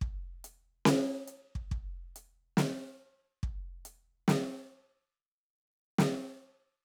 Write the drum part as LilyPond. \new DrumStaff \drummode { \time 4/4 \tempo 4 = 70 bd8 hh8 \tuplet 3/2 { sn16 r16 r16 hh16 r16 bd16 } bd8 hh8 sn4 | bd8 hh8 sn4 r4 sn4 | }